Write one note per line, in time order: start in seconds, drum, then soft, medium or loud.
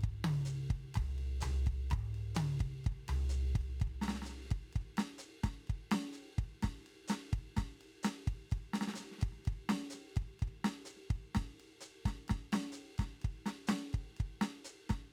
0.01 kick soft
0.01 ride soft
0.09 kick soft
0.24 high tom loud
0.24 ride medium
0.45 hi-hat pedal medium
0.45 ride soft
0.70 kick soft
0.70 ride soft
0.75 kick soft
0.95 kick soft
0.95 floor tom medium
0.95 ride medium
1.18 ride soft
1.41 floor tom medium
1.41 hi-hat pedal medium
1.41 ride medium
1.66 kick soft
1.66 ride soft
1.72 kick soft
1.91 kick soft
1.91 mid tom medium
1.91 ride medium
1.99 kick soft
2.15 ride soft
2.35 hi-hat pedal medium
2.35 high tom loud
2.35 ride medium
2.60 kick soft
2.60 ride soft
2.66 kick soft
2.85 kick soft
2.85 ride soft
2.92 kick soft
3.08 floor tom loud
3.08 ride medium
3.29 hi-hat pedal medium
3.29 ride soft
3.55 kick soft
3.55 ride soft
3.61 kick soft
3.80 kick soft
3.80 ride soft
3.87 kick soft
4.02 snare medium
4.02 ride medium
4.08 snare medium
4.14 snare soft
4.22 snare soft
4.22 hi-hat pedal medium
4.27 snare soft
4.27 ride soft
4.35 snare soft
4.39 snare soft
4.44 snare soft
4.49 kick soft
4.49 snare soft
4.49 ride soft
4.53 snare soft
4.57 snare soft
4.73 kick soft
4.73 ride soft
4.81 kick soft
4.97 snare medium
4.97 ride medium
5.18 hi-hat pedal medium
5.18 ride soft
5.44 kick soft
5.44 snare medium
5.44 ride medium
5.67 kick soft
5.67 ride soft
5.91 snare medium
5.91 ride medium
6.13 hi-hat pedal soft
6.13 ride soft
6.38 kick soft
6.38 ride soft
6.44 kick soft
6.63 kick soft
6.63 snare medium
6.63 ride medium
6.69 kick soft
6.81 snare soft
6.86 ride soft
7.08 snare medium
7.08 hi-hat pedal medium
7.08 ride medium
7.33 kick soft
7.33 ride soft
7.38 kick soft
7.56 kick soft
7.56 snare medium
7.56 hi-hat pedal soft
7.56 ride medium
7.63 kick soft
7.81 ride soft
8.03 snare medium
8.03 hi-hat pedal medium
8.03 ride medium
8.28 kick soft
8.28 ride soft
8.33 kick soft
8.50 kick soft
8.50 hi-hat pedal soft
8.50 ride soft
8.57 kick soft
8.74 snare medium
8.74 ride medium
8.81 snare medium
8.88 snare soft
8.94 snare soft
8.94 hi-hat pedal medium
8.98 snare soft
8.98 ride soft
9.05 snare soft
9.12 snare soft
9.19 snare soft
9.19 ride medium
9.23 kick soft
9.23 snare soft
9.28 kick soft
9.32 snare soft
9.38 snare soft
9.41 snare soft
9.43 snare soft
9.43 hi-hat pedal soft
9.43 ride soft
9.47 kick soft
9.52 kick soft
9.69 snare medium
9.69 ride medium
9.90 hi-hat pedal medium
9.90 ride soft
9.94 snare soft
10.16 kick soft
10.16 ride soft
10.22 kick soft
10.40 kick soft
10.40 ride soft
10.48 kick soft
10.65 snare medium
10.65 ride medium
10.85 hi-hat pedal medium
10.85 ride soft
10.96 snare soft
11.10 kick soft
11.10 ride soft
11.16 kick soft
11.35 kick soft
11.35 snare medium
11.35 ride medium
11.42 kick soft
11.60 ride soft
11.81 hi-hat pedal medium
11.81 ride soft
12.06 kick soft
12.06 snare medium
12.06 ride medium
12.28 kick soft
12.28 snare medium
12.28 ride soft
12.36 kick soft
12.53 snare medium
12.53 ride medium
12.72 hi-hat pedal medium
12.72 ride soft
12.98 kick soft
12.98 snare soft
12.98 ride soft
13.22 kick soft
13.22 ride soft
13.46 snare medium
13.46 ride medium
13.67 snare medium
13.67 hi-hat pedal medium
13.67 ride medium
13.93 kick soft
13.93 ride soft
14.08 snare soft
14.12 snare soft
14.17 kick soft
14.17 ride soft
14.41 snare medium
14.41 ride medium
14.65 hi-hat pedal medium
14.65 ride soft
14.90 kick soft
14.90 snare soft
14.90 ride soft